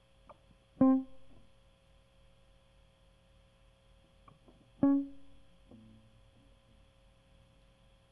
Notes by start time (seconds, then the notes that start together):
0.81 C4
4.83 C#4